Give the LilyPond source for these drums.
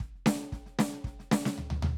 \new DrumStaff \drummode { \time 4/4 \tempo 4 = 114 <bd sn>16 sn16 sn16 sn16 <bd sn>16 sn16 sn16 sn16 <bd sn>16 sn16 sn16 sn16 tomfh16 tomfh16 tomfh8 | }